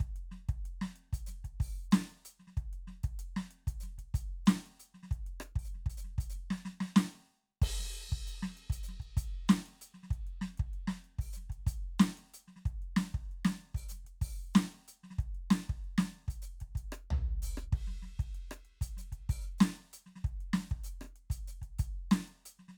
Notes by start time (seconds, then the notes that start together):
0.01 kick, closed hi-hat
0.16 closed hi-hat
0.32 snare
0.49 kick, closed hi-hat
0.66 closed hi-hat
0.82 snare
0.96 closed hi-hat
1.13 closed hi-hat, kick
1.27 snare, hi-hat pedal
1.45 kick, closed hi-hat
1.60 open hi-hat, kick
1.92 snare, hi-hat pedal
2.10 closed hi-hat
2.26 closed hi-hat
2.40 snare
2.48 snare
2.57 kick, closed hi-hat
2.73 closed hi-hat
2.88 snare
3.04 kick, closed hi-hat
3.19 closed hi-hat
3.37 snare
3.51 closed hi-hat
3.67 kick, open hi-hat
3.81 snare, hi-hat pedal
3.98 kick, closed hi-hat
4.14 open hi-hat, kick
4.46 snare, hi-hat pedal
4.66 closed hi-hat
4.80 closed hi-hat
4.94 snare
5.03 snare
5.11 kick, closed hi-hat
5.27 closed hi-hat
5.41 cross-stick
5.56 kick, open hi-hat
5.65 hi-hat pedal
5.75 snare
5.86 open hi-hat, kick
5.98 hi-hat pedal
6.05 snare
6.18 open hi-hat, kick
6.30 hi-hat pedal
6.36 snare
6.51 snare
6.66 snare
6.81 snare
6.96 snare
7.62 kick, crash
7.79 snare
7.94 closed hi-hat
8.09 kick, snare
8.27 closed hi-hat
8.43 snare
8.57 closed hi-hat
8.70 open hi-hat, kick
8.84 hi-hat pedal
8.89 snare
9.00 kick, closed hi-hat
9.17 open hi-hat, kick
9.49 snare, hi-hat pedal
9.66 closed hi-hat
9.82 closed hi-hat
9.94 snare
10.04 snare
10.11 kick, closed hi-hat
10.27 closed hi-hat
10.42 snare
10.58 kick, closed hi-hat
10.74 closed hi-hat
10.88 snare
11.05 closed hi-hat
11.19 open hi-hat, kick
11.33 snare, hi-hat pedal
11.50 kick, closed hi-hat
11.67 open hi-hat, kick
11.99 snare, hi-hat pedal
12.18 closed hi-hat
12.34 closed hi-hat
12.48 snare
12.56 snare
12.66 kick, closed hi-hat
12.82 closed hi-hat
12.97 snare
13.14 kick, closed hi-hat
13.32 closed hi-hat
13.45 snare
13.61 closed hi-hat
13.75 open hi-hat, kick
13.89 snare, hi-hat pedal
14.05 kick, closed hi-hat
14.22 open hi-hat, kick
14.54 snare, hi-hat pedal
14.63 snare
14.72 closed hi-hat
14.88 closed hi-hat
15.04 snare
15.11 snare
15.19 kick, closed hi-hat
15.35 closed hi-hat
15.51 snare
15.69 kick, closed hi-hat
15.85 closed hi-hat
15.98 snare
16.28 open hi-hat, kick
16.42 hi-hat pedal
16.61 kick, closed hi-hat
16.76 kick, closed hi-hat
16.92 cross-stick
17.11 floor tom
17.43 hi-hat pedal
17.58 cross-stick
17.73 kick, crash
17.87 snare
18.03 snare
18.20 kick, closed hi-hat
18.35 closed hi-hat
18.51 cross-stick
18.65 closed hi-hat
18.82 closed hi-hat, kick
18.97 snare, hi-hat pedal
19.12 kick, closed hi-hat
19.30 open hi-hat, kick
19.59 snare, hi-hat pedal
19.68 snare
19.76 closed hi-hat
19.94 closed hi-hat
20.06 snare
20.16 snare
20.25 kick, closed hi-hat
20.41 closed hi-hat
20.54 snare
20.71 kick, open hi-hat
20.84 closed hi-hat, hi-hat pedal
21.01 cross-stick
21.05 cross-stick
21.16 closed hi-hat
21.30 open hi-hat, kick
21.48 snare, hi-hat pedal
21.62 kick, closed hi-hat
21.79 open hi-hat, kick
22.11 snare, hi-hat pedal
22.28 closed hi-hat
22.46 closed hi-hat
22.59 snare
22.69 snare